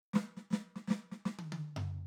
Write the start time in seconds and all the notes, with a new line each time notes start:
0.14 snare
0.16 snare
0.37 snare
0.51 snare
0.53 snare
0.76 snare
0.88 snare
0.91 snare
1.12 snare
1.26 snare
1.39 high tom
1.53 high tom
1.77 floor tom